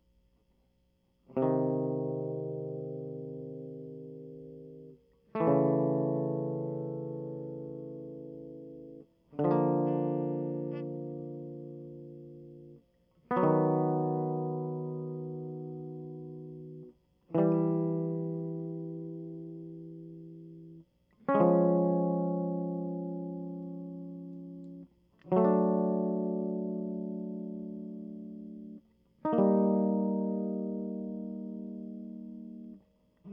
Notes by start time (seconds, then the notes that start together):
1.38 C3
1.44 D#3
5.36 A3
5.42 E3
5.49 C#3
9.34 D3
9.40 D3
9.45 F3
9.52 A#3
13.32 B3
13.38 F#3
13.44 D#3
17.36 E3 G3
21.29 C#4
21.36 G#3
21.41 F3
25.33 F#3
25.37 A3
25.45 D4
29.25 D#4
29.33 A#3
29.39 G3